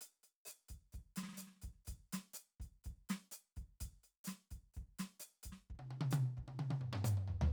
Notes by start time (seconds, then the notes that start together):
0.03 closed hi-hat
0.23 closed hi-hat
0.45 open hi-hat, hi-hat pedal
0.68 closed hi-hat, kick
0.92 kick, hi-hat pedal
0.99 kick
1.16 closed hi-hat, snare
1.23 snare
1.28 snare
1.33 snare
1.37 closed hi-hat, snare, hi-hat pedal
1.42 snare
1.47 snare
1.52 snare
1.56 snare
1.61 closed hi-hat, kick, snare
1.63 snare
1.67 kick, snare
1.73 snare
1.85 closed hi-hat, kick, hi-hat pedal
1.93 kick
2.12 closed hi-hat, snare
2.33 hi-hat pedal
2.38 closed hi-hat
2.60 closed hi-hat, kick
2.65 kick
2.84 closed hi-hat, kick
2.91 kick
3.09 closed hi-hat, snare
3.31 closed hi-hat, hi-hat pedal
3.56 closed hi-hat, kick
3.62 kick
3.80 closed hi-hat, kick
3.86 kick
4.03 closed hi-hat
4.24 snare, hi-hat pedal
4.28 closed hi-hat
4.50 closed hi-hat, kick
4.56 kick
4.74 open hi-hat, kick
4.81 kick
4.98 closed hi-hat, snare
5.19 hi-hat pedal
5.43 closed hi-hat, kick
5.52 snare
5.70 kick
5.75 kick
5.79 high tom
5.90 high tom
6.01 high tom
6.11 hi-hat pedal, high tom
6.25 high tom
6.37 kick, high tom
6.43 kick
6.48 high tom
6.59 high tom
6.70 high tom
6.81 mid tom
6.93 mid tom
7.04 hi-hat pedal, mid tom
7.17 mid tom
7.27 kick, floor tom
7.41 floor tom